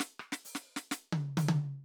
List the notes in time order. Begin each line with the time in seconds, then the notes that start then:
0.00 snare, hi-hat pedal
0.19 cross-stick
0.32 snare
0.45 hi-hat pedal
0.55 snare
0.76 snare
0.91 snare, hi-hat pedal
1.12 high tom
1.37 hi-hat pedal, high tom
1.48 high tom